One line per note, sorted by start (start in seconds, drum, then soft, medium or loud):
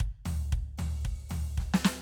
0.00 kick medium
0.25 open hi-hat medium
0.25 floor tom loud
0.52 kick medium
0.78 open hi-hat medium
0.78 floor tom loud
1.05 kick medium
1.29 open hi-hat medium
1.29 floor tom loud
1.57 kick medium
1.57 snare soft
1.74 snare loud
1.80 hi-hat pedal soft
1.85 snare loud